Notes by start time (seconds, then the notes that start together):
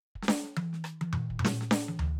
0.15 kick
0.22 snare
0.28 snare
0.44 snare
0.57 high tom
0.73 snare
0.84 cross-stick
1.01 high tom
1.13 mid tom
1.30 kick
1.39 mid tom
1.45 snare
1.61 snare
1.71 snare
1.88 high tom
1.99 floor tom